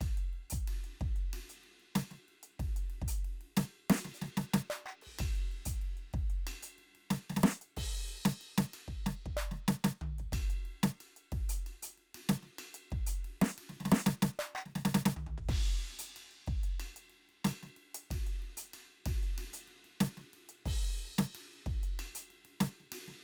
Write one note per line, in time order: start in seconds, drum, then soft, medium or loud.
0.01 kick medium
0.01 ride bell medium
0.17 closed hi-hat soft
0.33 ride soft
0.50 closed hi-hat loud
0.50 kick soft
0.68 ride medium
0.84 closed hi-hat soft
1.00 kick medium
1.00 ride soft
1.16 closed hi-hat soft
1.33 ride loud
1.49 closed hi-hat medium
1.64 ride soft
1.80 ride soft
1.96 snare loud
1.96 ride bell loud
2.11 snare soft
2.28 ride soft
2.43 closed hi-hat medium
2.60 kick medium
2.60 cross-stick soft
2.60 floor tom soft
2.60 ride medium
2.76 closed hi-hat medium
2.90 ride medium
3.02 kick soft
3.08 closed hi-hat loud
3.25 ride medium
3.41 ride soft
3.57 snare loud
3.57 ride bell medium
3.90 snare loud
3.90 ride loud
4.05 snare soft
4.14 hi-hat pedal medium
4.22 snare medium
4.37 snare medium
4.54 snare loud
4.70 percussion loud
4.86 percussion medium
5.02 crash medium
5.07 kick soft
5.19 kick medium
5.19 hi-hat pedal soft
5.19 ride bell loud
5.35 closed hi-hat soft
5.52 ride soft
5.66 closed hi-hat loud
5.66 kick soft
5.82 ride soft
5.97 closed hi-hat soft
6.13 kick medium
6.13 ride soft
6.30 closed hi-hat soft
6.47 ride bell loud
6.63 closed hi-hat loud
6.78 ride soft
6.95 ride soft
7.11 snare loud
7.11 ride bell medium
7.30 snare medium
7.37 snare medium
7.44 snare loud
7.62 closed hi-hat medium
7.77 kick medium
7.77 crash loud
7.94 closed hi-hat soft
8.09 ride bell soft
8.25 snare loud
8.41 ride bell medium
8.58 snare loud
8.74 ride bell medium
8.88 kick soft
9.06 snare medium
9.26 kick medium
9.37 percussion loud
9.51 snare soft
9.68 snare loud
9.84 snare loud
10.01 floor tom loud
10.19 kick soft
10.19 closed hi-hat soft
10.33 kick medium
10.33 ride bell loud
10.50 closed hi-hat medium
10.65 ride soft
10.83 snare loud
11.01 ride bell medium
11.17 closed hi-hat medium
11.32 kick medium
11.32 ride medium
11.49 closed hi-hat loud
11.67 ride bell medium
11.83 closed hi-hat loud
11.98 ride soft
12.15 ride medium
12.29 snare loud
12.43 snare soft
12.59 ride bell loud
12.74 closed hi-hat medium
12.91 kick medium
12.91 ride soft
13.07 closed hi-hat loud
13.25 ride medium
13.42 snare loud
13.58 ride medium
13.69 snare soft
13.80 snare soft
13.85 snare medium
13.92 snare loud
14.06 snare loud
14.22 snare loud
14.39 percussion loud
14.55 percussion loud
14.66 snare soft
14.76 snare medium
14.85 snare loud
14.95 snare loud
15.06 snare loud
15.17 floor tom medium
15.38 kick medium
15.49 kick medium
15.49 ride loud
15.66 closed hi-hat soft
15.83 ride soft
15.99 closed hi-hat loud
16.16 ride bell medium
16.31 closed hi-hat soft
16.47 kick medium
16.47 ride soft
16.64 closed hi-hat medium
16.80 ride bell loud
16.96 closed hi-hat medium
17.10 ride soft
17.29 ride soft
17.45 snare loud
17.45 ride bell loud
17.63 snare soft
17.77 ride medium
17.95 closed hi-hat loud
18.11 kick medium
18.11 ride loud
18.27 closed hi-hat soft
18.42 ride soft
18.57 closed hi-hat loud
18.74 ride bell medium
19.06 kick medium
19.06 ride loud
19.23 closed hi-hat soft
19.38 ride loud
19.53 closed hi-hat loud
19.68 ride soft
19.85 ride soft
20.01 snare loud
20.01 ride medium
20.17 snare soft
20.34 ride medium
20.49 closed hi-hat medium
20.66 kick medium
20.66 crash loud
20.83 closed hi-hat soft
20.99 ride soft
21.19 snare loud
21.35 ride medium
21.54 closed hi-hat soft
21.66 kick medium
21.66 ride soft
21.83 closed hi-hat medium
21.99 ride bell loud
22.15 closed hi-hat loud
22.31 ride soft
22.45 ride medium
22.61 snare loud
22.61 ride bell medium
22.80 snare soft
22.92 ride loud
23.08 snare soft